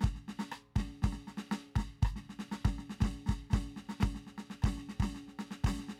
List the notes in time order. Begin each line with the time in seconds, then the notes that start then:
0.01 kick, snare
0.04 snare
0.15 snare
0.28 snare
0.39 snare
0.52 cross-stick
0.76 kick, snare
0.78 snare
1.02 kick, snare
1.04 snare
1.13 snare
1.27 snare
1.52 snare
1.76 kick, snare
1.78 snare
2.02 kick, cross-stick, snare
2.16 snare
2.29 snare
2.39 snare
2.52 snare
2.65 kick, snare
2.79 snare
2.90 snare
3.01 kick, snare
3.04 snare
3.26 kick, snare
3.29 snare
3.50 kick, snare
3.54 snare
3.77 snare
3.89 snare
4.00 snare
4.03 kick, snare
4.15 snare
4.27 snare
4.38 snare
4.50 snare
4.62 kick, cross-stick, snare
4.78 snare
4.89 snare
5.00 kick, snare
5.03 snare
5.15 snare
5.28 snare
5.39 snare
5.51 snare
5.64 kick, snare
5.67 snare
5.79 snare
5.89 snare